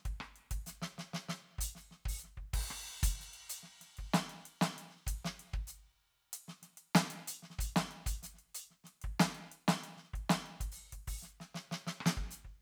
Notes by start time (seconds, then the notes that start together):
0.01 snare
0.05 kick, closed hi-hat
0.20 cross-stick
0.36 closed hi-hat
0.51 kick, open hi-hat
0.66 snare, hi-hat pedal
0.82 snare
0.98 snare
1.14 snare
1.29 snare
1.58 open hi-hat, kick
1.75 snare, hi-hat pedal
1.91 snare
2.05 open hi-hat, kick
2.19 hi-hat pedal
2.24 snare
2.37 kick
2.53 kick, crash
2.70 cross-stick
2.87 closed hi-hat
3.03 closed hi-hat, kick
3.19 snare, hi-hat pedal
3.34 closed hi-hat
3.50 closed hi-hat
3.63 snare
3.81 snare, closed hi-hat
3.97 kick, closed hi-hat
4.14 snare
4.29 closed hi-hat
4.46 closed hi-hat
4.61 snare
4.78 closed hi-hat
4.90 snare
4.95 snare
5.00 snare
5.07 kick, closed hi-hat
5.25 snare
5.39 closed hi-hat
5.54 kick, open hi-hat
5.67 hi-hat pedal
6.33 closed hi-hat
6.48 snare
6.62 snare, closed hi-hat
6.77 closed hi-hat
6.95 snare
7.10 closed hi-hat
7.28 closed hi-hat
7.42 snare
7.50 snare
7.55 kick, snare
7.61 closed hi-hat
7.76 snare
7.91 closed hi-hat
8.06 closed hi-hat, kick
8.23 snare, hi-hat pedal
8.34 snare
8.39 closed hi-hat
8.55 closed hi-hat
8.70 snare
8.84 snare, closed hi-hat
9.02 kick, closed hi-hat
9.20 snare
9.35 closed hi-hat
9.52 closed hi-hat
9.68 snare
9.84 closed hi-hat
9.97 snare
10.03 snare
10.08 snare
10.14 kick, closed hi-hat
10.30 snare
10.46 closed hi-hat
10.60 kick, open hi-hat
10.72 hi-hat pedal
10.77 snare
10.92 kick, closed hi-hat
11.07 open hi-hat, kick
11.22 snare
11.27 hi-hat pedal
11.40 snare
11.55 snare
11.71 snare
11.87 snare
12.01 cross-stick
12.06 snare
12.17 kick
12.31 hi-hat pedal
12.45 kick